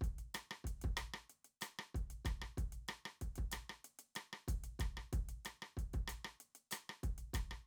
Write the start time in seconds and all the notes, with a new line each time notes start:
0.01 kick, closed hi-hat
0.18 closed hi-hat
0.34 cross-stick, closed hi-hat
0.51 cross-stick
0.64 kick, closed hi-hat
0.82 kick, closed hi-hat
0.97 cross-stick, closed hi-hat
1.14 cross-stick
1.30 closed hi-hat
1.45 closed hi-hat
1.61 closed hi-hat, cross-stick
1.79 cross-stick
1.95 kick, closed hi-hat
2.10 closed hi-hat
2.25 kick, cross-stick, closed hi-hat
2.42 cross-stick
2.57 kick, closed hi-hat
2.72 closed hi-hat
2.88 cross-stick, closed hi-hat
3.05 cross-stick
3.21 kick, closed hi-hat
3.36 kick, closed hi-hat
3.52 cross-stick, closed hi-hat
3.70 cross-stick
3.84 closed hi-hat
3.99 closed hi-hat
4.15 cross-stick, closed hi-hat
4.33 cross-stick
4.48 kick, closed hi-hat
4.64 closed hi-hat
4.79 kick, cross-stick, closed hi-hat
4.97 cross-stick
5.13 kick, closed hi-hat
5.29 closed hi-hat
5.45 cross-stick, closed hi-hat
5.62 cross-stick
5.77 kick, closed hi-hat
5.93 kick, closed hi-hat
6.08 cross-stick, closed hi-hat
6.25 cross-stick
6.40 closed hi-hat
6.55 closed hi-hat
6.71 closed hi-hat, cross-stick
6.89 cross-stick
7.03 kick, closed hi-hat
7.18 closed hi-hat
7.34 kick, cross-stick, closed hi-hat
7.51 cross-stick